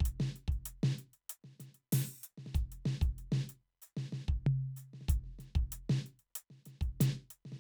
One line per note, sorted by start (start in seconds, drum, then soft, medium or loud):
0.01 kick medium
0.06 closed hi-hat medium
0.21 snare medium
0.36 closed hi-hat soft
0.48 kick soft
0.52 closed hi-hat soft
0.66 closed hi-hat loud
0.84 snare medium
0.99 closed hi-hat soft
1.14 closed hi-hat soft
1.30 closed hi-hat loud
1.45 snare soft
1.60 snare soft
1.60 closed hi-hat soft
1.75 closed hi-hat soft
1.93 open hi-hat loud
1.93 snare medium
2.24 open hi-hat medium
2.24 hi-hat pedal medium
2.38 snare soft
2.47 snare soft
2.55 kick medium
2.55 closed hi-hat soft
2.72 closed hi-hat soft
2.86 snare medium
3.02 kick medium
3.02 closed hi-hat soft
3.19 closed hi-hat soft
3.33 snare medium
3.37 snare soft
3.50 closed hi-hat medium
3.82 hi-hat pedal medium
3.97 snare medium
4.13 snare soft
4.29 kick medium
4.47 floor tom loud
4.77 closed hi-hat soft
4.77 hi-hat pedal medium
4.94 snare soft
5.02 snare soft
5.09 closed hi-hat medium
5.09 kick medium
5.24 snare soft
5.39 snare soft
5.39 closed hi-hat soft
5.56 kick medium
5.56 closed hi-hat soft
5.73 closed hi-hat medium
5.90 snare medium
6.07 closed hi-hat soft
6.20 closed hi-hat soft
6.36 closed hi-hat loud
6.51 snare soft
6.66 snare soft
6.66 closed hi-hat soft
6.82 kick soft
6.82 closed hi-hat soft
7.01 open hi-hat loud
7.01 snare loud
7.09 snare soft
7.31 open hi-hat medium
7.46 snare soft
7.53 snare soft
7.57 snare soft